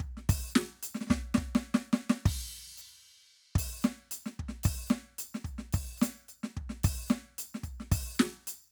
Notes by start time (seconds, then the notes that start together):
0.01 kick, percussion
0.18 snare
0.30 kick, percussion
0.51 percussion
0.56 snare
0.84 percussion
0.96 snare
1.02 snare
1.08 kick, snare
1.11 snare
1.35 kick, snare
1.56 snare
1.75 snare
1.94 snare
2.11 snare
2.26 kick, crash
2.79 percussion
3.56 kick, percussion
3.83 snare, percussion
4.12 percussion
4.27 snare
4.40 kick
4.50 snare
4.64 kick, percussion
4.88 snare, percussion
5.19 percussion
5.35 snare
5.45 kick, percussion
5.59 snare
5.74 kick, percussion
5.99 snare, percussion
6.04 percussion
6.29 percussion
6.44 snare
6.58 kick
6.70 snare
6.85 kick, percussion
7.09 snare, percussion
7.39 percussion
7.55 snare
7.64 kick, percussion
7.81 snare
7.93 kick, percussion
8.16 percussion
8.20 snare
8.48 percussion